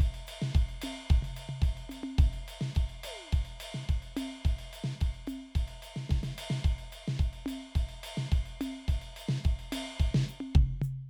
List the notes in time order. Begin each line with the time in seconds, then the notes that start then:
0.01 kick, ride
0.16 ride
0.22 kick
0.28 hi-hat pedal, ride
0.43 snare
0.56 kick, ride
0.70 ride
0.83 hi-hat pedal, high tom, ride
1.11 kick, ride
1.24 floor tom, ride
1.38 hi-hat pedal, ride
1.51 floor tom
1.63 kick, ride
1.79 ride
1.91 hi-hat pedal, high tom, ride
2.05 high tom
2.20 kick, ride
2.34 ride
2.50 hi-hat pedal, ride
2.63 snare
2.77 kick, ride
2.91 ride
3.05 hi-hat pedal, high tom, ride
3.34 kick, ride
3.47 ride
3.62 hi-hat pedal, ride
3.76 snare
3.91 kick, ride
4.04 ride
4.18 hi-hat pedal, high tom, ride
4.47 kick, ride
4.60 ride
4.75 hi-hat pedal, ride
4.86 snare
5.02 kick, ride
5.16 ride
5.29 hi-hat pedal, high tom, ride
5.57 kick, ride
5.69 ride
5.84 hi-hat pedal, ride
5.98 snare
6.11 kick, snare, ride
6.25 snare, ride
6.39 hi-hat pedal, ride
6.52 snare
6.66 kick, ride
6.80 ride
6.94 hi-hat pedal, ride
7.09 snare
7.21 kick, ride
7.34 ride
7.48 hi-hat pedal, high tom, ride
7.77 kick, ride
7.90 ride
8.05 hi-hat pedal, ride
8.19 snare
8.33 kick, ride
8.47 ride
8.63 hi-hat pedal, high tom, ride
8.90 kick, ride
9.03 ride
9.18 hi-hat pedal, ride
9.30 snare
9.46 kick, ride
9.61 ride
9.74 hi-hat pedal, high tom, ride
10.01 kick, ride
10.16 snare
10.30 hi-hat pedal, ride
10.42 high tom
10.57 kick, floor tom
10.83 floor tom, hi-hat pedal